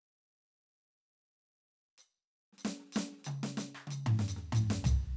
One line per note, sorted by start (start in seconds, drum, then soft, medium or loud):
1.98 hi-hat pedal soft
2.53 snare soft
2.57 snare soft
2.57 hi-hat pedal medium
2.61 snare soft
2.65 snare loud
2.79 snare soft
2.84 snare soft
2.88 snare soft
2.91 snare soft
2.91 hi-hat pedal medium
2.96 snare loud
3.12 snare soft
3.17 snare soft
3.21 snare soft
3.21 hi-hat pedal loud
3.26 high tom medium
3.43 snare medium
3.57 snare medium
3.57 hi-hat pedal medium
3.74 percussion medium
3.87 hi-hat pedal loud
3.87 high tom loud
3.87 percussion soft
4.06 mid tom loud
4.19 snare medium
4.28 hi-hat pedal loud
4.36 snare soft
4.52 hi-hat pedal loud
4.52 mid tom loud
4.70 snare loud
4.84 floor tom loud
4.84 hi-hat pedal loud